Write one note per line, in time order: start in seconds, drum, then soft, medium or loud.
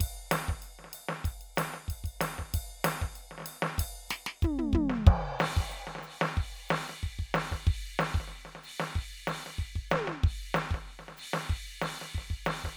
0.01 kick medium
0.01 ride loud
0.32 snare loud
0.32 hi-hat pedal medium
0.32 ride loud
0.49 kick medium
0.49 snare soft
0.63 ride medium
0.80 snare soft
0.85 snare soft
0.94 hi-hat pedal medium
0.94 ride medium
1.09 snare medium
1.25 kick medium
1.25 ride medium
1.41 ride soft
1.56 snare loud
1.56 hi-hat pedal medium
1.56 ride loud
1.74 snare soft
1.89 kick medium
1.89 ride medium
2.05 kick soft
2.05 ride medium
2.21 snare loud
2.21 hi-hat pedal medium
2.21 ride loud
2.39 kick soft
2.39 snare soft
2.55 kick medium
2.55 ride loud
2.85 snare loud
2.85 hi-hat pedal medium
2.85 ride loud
3.02 kick medium
3.02 snare soft
3.16 ride medium
3.32 snare soft
3.39 snare soft
3.41 snare soft
3.43 snare soft
3.43 ride medium
3.47 hi-hat pedal medium
3.63 snare loud
3.79 kick medium
3.79 ride loud
4.08 kick soft
4.08 snare loud
4.08 hi-hat pedal medium
4.08 ride medium
4.27 snare loud
4.43 kick medium
4.43 floor tom loud
4.43 hi-hat pedal medium
4.59 floor tom loud
4.74 kick medium
4.74 floor tom loud
4.90 snare medium
5.07 kick loud
5.07 hi-hat pedal soft
5.07 crash loud
5.40 snare loud
5.40 hi-hat pedal medium
5.40 crash medium
5.57 kick medium
5.57 snare soft
5.71 snare soft
5.71 hi-hat pedal medium
5.88 snare medium
5.96 snare medium
5.99 snare soft
6.02 snare soft
6.02 hi-hat pedal medium
6.02 crash medium
6.22 snare loud
6.38 kick medium
6.38 crash medium
6.54 crash soft
6.69 snare loud
6.69 hi-hat pedal medium
6.69 crash medium
6.90 snare soft
7.04 kick medium
7.04 crash soft
7.19 kick medium
7.19 crash soft
7.35 snare loud
7.35 hi-hat pedal medium
7.35 crash medium
7.52 kick soft
7.52 snare soft
7.68 kick medium
7.68 crash medium
7.99 snare loud
7.99 hi-hat pedal medium
7.99 crash medium
8.15 kick medium
8.21 snare soft
8.28 snare soft
8.28 crash soft
8.46 snare soft
8.56 snare soft
8.63 hi-hat pedal medium
8.63 crash medium
8.80 snare loud
8.96 kick medium
8.96 crash medium
9.12 crash soft
9.28 snare loud
9.28 hi-hat pedal medium
9.28 crash medium
9.47 snare soft
9.59 kick medium
9.59 crash soft
9.76 kick medium
9.91 snare loud
9.91 hi-hat pedal medium
9.91 high tom loud
10.08 snare medium
10.24 kick medium
10.24 crash medium
10.55 snare loud
10.55 hi-hat pedal medium
10.55 crash soft
10.71 kick medium
10.71 snare soft
10.85 crash soft
11.00 snare soft
11.09 snare soft
11.17 hi-hat pedal medium
11.17 crash medium
11.34 snare loud
11.50 kick medium
11.50 crash medium
11.66 crash soft
11.82 snare loud
11.82 hi-hat pedal medium
11.82 crash medium
12.02 snare soft
12.15 kick medium
12.15 snare soft
12.15 crash medium
12.31 kick soft
12.31 crash soft
12.46 snare loud
12.46 hi-hat pedal medium
12.46 crash medium
12.65 kick soft
12.65 snare soft